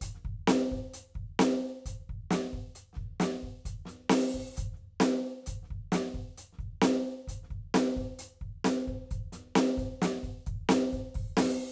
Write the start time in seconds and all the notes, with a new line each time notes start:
0.01 closed hi-hat, kick
0.14 snare
0.25 kick
0.47 closed hi-hat, snare
0.71 kick
0.94 closed hi-hat
1.14 kick, closed hi-hat
1.39 closed hi-hat, snare
1.86 closed hi-hat, kick
2.09 kick
2.31 closed hi-hat, snare
2.52 kick, closed hi-hat
2.75 closed hi-hat
2.93 kick, snare
2.97 closed hi-hat
3.20 closed hi-hat, snare
3.41 kick, closed hi-hat
3.65 closed hi-hat, kick
3.85 closed hi-hat, snare
4.10 open hi-hat, snare
4.34 kick
4.55 closed hi-hat, kick, hi-hat pedal
4.73 snare
4.77 closed hi-hat
5.00 closed hi-hat, snare
5.22 closed hi-hat
5.42 closed hi-hat, snare
5.47 kick
5.63 snare
5.67 kick, closed hi-hat
5.92 closed hi-hat, snare
6.14 kick, closed hi-hat
6.34 closed hi-hat, snare
6.52 snare
6.59 kick, closed hi-hat
6.82 closed hi-hat, snare
7.27 closed hi-hat, kick
7.43 snare
7.50 kick, closed hi-hat
7.74 closed hi-hat, snare
7.96 kick, closed hi-hat
8.19 closed hi-hat
8.41 kick, closed hi-hat
8.64 closed hi-hat, snare
8.86 closed hi-hat, kick
9.11 closed hi-hat, kick
9.32 closed hi-hat, snare
9.55 closed hi-hat, snare
9.77 closed hi-hat, kick
10.02 closed hi-hat, snare
10.23 closed hi-hat, kick
10.46 kick, closed hi-hat
10.69 closed hi-hat, snare
10.92 closed hi-hat, kick, snare
11.14 kick, open hi-hat
11.37 open hi-hat, snare
11.43 snare
11.55 snare